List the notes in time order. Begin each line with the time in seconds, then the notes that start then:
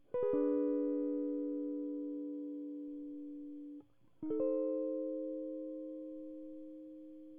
0.14 B4
0.23 G#4
0.33 D4
4.23 D#4
4.30 A4
4.40 C5
5.75 A4